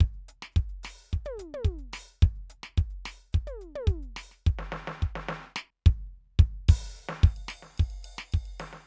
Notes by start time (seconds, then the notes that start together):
0.01 kick, closed hi-hat
0.14 closed hi-hat
0.29 closed hi-hat
0.43 snare
0.52 hi-hat pedal
0.57 kick, closed hi-hat
0.70 closed hi-hat
0.84 open hi-hat, snare
1.10 kick, closed hi-hat, hi-hat pedal
1.26 closed hi-hat, high tom
1.38 kick, closed hi-hat
1.54 high tom
1.65 kick, closed hi-hat
1.79 closed hi-hat
1.93 open hi-hat, snare
2.21 kick, closed hi-hat, hi-hat pedal
2.36 closed hi-hat
2.50 closed hi-hat
2.64 snare
2.78 kick, closed hi-hat
2.91 closed hi-hat
3.06 open hi-hat, snare
3.33 kick, closed hi-hat, hi-hat pedal
3.47 closed hi-hat, high tom
3.62 closed hi-hat
3.76 high tom
3.88 kick, closed hi-hat
4.03 closed hi-hat
4.17 open hi-hat, snare
4.32 snare
4.45 kick, closed hi-hat, hi-hat pedal
4.59 snare
4.73 snare
4.88 snare
5.03 kick
5.16 snare
5.29 snare
5.56 snare
5.87 kick
6.07 kick
6.40 kick
6.69 open hi-hat, kick, ride
7.00 ride
7.09 snare
7.23 kick, hi-hat pedal, ride
7.37 ride
7.49 snare, ride
7.63 snare
7.78 kick, ride
7.91 ride
8.03 hi-hat pedal, ride
8.19 snare
8.33 kick, ride
8.46 ride
8.60 snare, hi-hat pedal, ride
8.73 snare